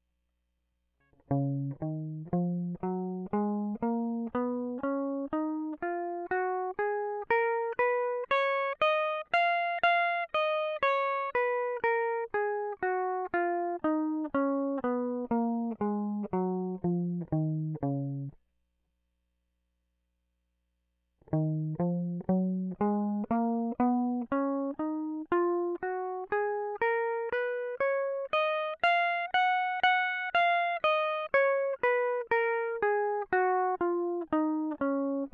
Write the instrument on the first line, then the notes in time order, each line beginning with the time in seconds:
electric guitar
1.32 C#3
1.83 D#3
2.34 F3
2.84 F#3
3.34 G#3
3.83 A#3
4.35 B3
4.84 C#4
5.33 D#4
5.83 F4
6.31 F#4
6.79 G#4
7.31 A#4
7.79 B4
8.31 C#5
8.82 D#5
9.34 F5
9.84 F5
10.35 D#5
10.83 C#5
11.35 B4
11.84 A#4
12.34 G#4
12.83 F#4
13.34 F4
13.85 D#4
14.35 C#4
14.84 B3
15.31 A#3
15.82 G#3
16.34 F#3
16.85 F3
17.33 D#3
17.84 C#3
21.34 D#3
21.81 F3
22.30 F#3
22.82 G#3
23.31 A#3
23.80 B3
24.32 C#4
24.80 D#4
25.32 F4
25.83 F#4
26.32 G#4
26.82 A#4
27.33 B4
27.81 C#5
28.33 D#5
28.84 F5
29.34 F#5
29.84 F#5
30.35 F5
30.84 D#5
31.34 C#5
31.84 B4
32.32 A#4
32.83 G#4
33.33 F#4
33.81 F4
34.33 D#4
34.81 C#4